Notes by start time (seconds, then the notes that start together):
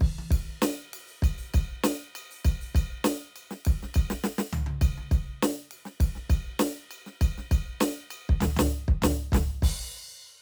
0.01 kick, crash
0.19 high tom
0.31 kick, ride
0.62 snare, ride bell
0.94 ride
1.08 open hi-hat
1.23 kick, ride bell
1.38 open hi-hat
1.54 kick, ride bell
1.84 snare, ride bell
2.16 ride bell
2.31 open hi-hat
2.45 kick, ride bell
2.61 open hi-hat
2.75 kick, ride bell
3.05 snare, ride bell
3.36 ride bell
3.51 snare
3.66 kick, ride
3.83 snare
3.95 kick, ride bell
4.11 snare
4.24 snare
4.39 snare
4.53 floor tom
4.67 mid tom
4.82 kick, ride bell
4.98 mid tom
5.12 kick, ride bell
5.43 snare
5.71 ride
5.86 snare
6.00 kick, ride
6.16 snare
6.30 kick, ride bell
6.60 snare, ride
6.91 ride bell
7.07 snare
7.21 kick, ride bell
7.38 snare
7.52 kick, ride bell
7.81 snare, ride bell
8.11 ride bell
8.30 kick
8.41 snare, floor tom
8.57 snare, floor tom
8.88 kick
9.03 snare, floor tom
9.33 kick, snare, floor tom
9.63 open hi-hat, kick, crash